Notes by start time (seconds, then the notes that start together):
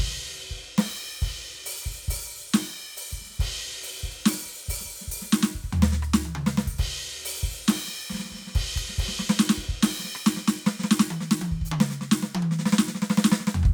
0.52 kick
0.79 snare, crash
1.23 kick, ride
1.67 open hi-hat
1.87 kick, open hi-hat
2.09 open hi-hat, kick
2.31 open hi-hat
2.55 snare, crash
2.77 open hi-hat
2.98 open hi-hat
3.12 kick, snare
3.22 snare
3.27 snare
3.31 snare
3.38 kick, snare, ride
3.84 open hi-hat
4.04 kick, open hi-hat
4.27 open hi-hat, snare
4.46 kick, open hi-hat
4.66 kick, snare
4.71 open hi-hat
4.81 snare
4.86 kick
4.91 open hi-hat
5.02 snare
5.09 kick, open hi-hat
5.23 snare
5.33 snare
5.56 kick
5.65 kick
5.74 floor tom
5.79 hi-hat pedal
5.83 snare
6.03 cross-stick
6.14 snare
6.26 high tom
6.36 mid tom
6.47 snare
6.58 snare
6.68 kick, open hi-hat
6.80 kick, ride
7.26 open hi-hat
7.44 kick
7.69 snare, crash
7.88 snare
8.11 kick, snare
8.15 snare
8.20 snare
8.26 snare
8.31 kick, snare
8.35 snare
8.39 snare
8.42 snare
8.48 snare
8.53 kick, snare, ride
8.77 kick, ride bell
8.90 snare
8.99 kick, ride
9.09 snare
9.20 kick, snare
9.30 snare
9.40 snare
9.58 kick
9.70 kick
9.84 snare, crash
10.00 snare
10.05 snare
10.16 cross-stick
10.27 snare
10.38 snare
10.49 snare, hi-hat pedal
10.67 snare
10.80 snare
10.85 snare
10.92 snare
10.99 snare, hi-hat pedal
11.11 high tom
11.22 snare
11.32 snare, hi-hat pedal
11.42 high tom
11.52 kick
11.62 kick, hi-hat pedal
11.73 mid tom
11.81 snare
11.92 hi-hat pedal
12.02 snare
12.12 snare
12.24 snare
12.36 high tom
12.43 high tom
12.52 snare
12.60 snare
12.67 snare
12.73 snare
12.79 snare
12.89 snare
12.96 snare
13.03 snare
13.11 snare
13.18 snare
13.25 snare
13.33 snare
13.41 snare
13.48 snare
13.55 floor tom
13.64 kick, floor tom